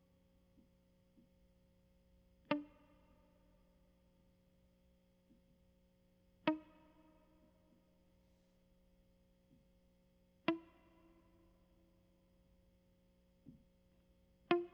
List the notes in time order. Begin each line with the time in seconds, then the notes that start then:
2.52 D4
6.48 D#4
10.49 E4
14.51 F4